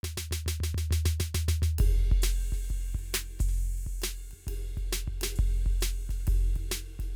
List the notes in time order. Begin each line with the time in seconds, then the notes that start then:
0.03 snare, floor tom
0.17 snare, floor tom
0.31 snare, floor tom
0.46 snare, floor tom
0.60 snare, floor tom
0.74 snare, floor tom
0.91 snare, floor tom
1.05 snare, floor tom
1.20 snare, floor tom
1.34 snare, floor tom
1.48 snare, floor tom
1.62 snare, floor tom
1.75 kick, ride
1.80 kick
2.11 kick
2.22 snare, crash
2.52 kick, snare
2.64 snare
2.69 kick, snare, ride bell
2.95 kick
2.99 ride
3.13 snare, ride
3.39 kick, snare, crash
3.49 snare
3.53 snare
3.57 snare
3.86 kick
4.02 snare, ride bell
4.31 kick, ride
4.44 kick, snare
4.48 ride
4.77 kick, ride, floor tom
4.93 snare, ride
5.08 kick
5.21 snare, ride
5.36 kick, crash
5.66 kick
5.81 snare, crash
6.09 kick, snare, ride bell
6.20 snare
6.25 kick, snare, ride
6.29 snare
6.31 snare
6.56 kick, ride
6.71 snare, ride
6.99 kick, snare, ride
7.10 snare